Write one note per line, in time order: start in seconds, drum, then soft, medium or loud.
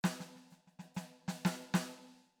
0.03 snare medium
0.03 hi-hat pedal soft
0.20 snare soft
0.35 snare soft
0.50 snare soft
0.50 hi-hat pedal soft
0.67 snare soft
0.79 snare soft
0.94 snare soft
0.94 hi-hat pedal soft
1.28 snare medium
1.45 snare medium
1.74 snare medium